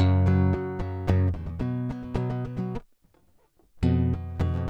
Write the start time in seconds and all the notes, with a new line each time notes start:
0.00 F#2 C#3 F#3
0.28 C#3 F#3 B3
0.54 F#2 C#3
0.81 F#2 C#3 F#3
1.09 F#2 C#3 D#3
1.35 E2
1.49 E2
1.61 B2 A#3
1.92 B2
2.16 B2 F#3 B3
2.24 B2
2.32 B2 F#3
2.47 B2
2.59 B2 F#3
3.84 F2 B2
4.15 F2 B2
4.41 E2 B2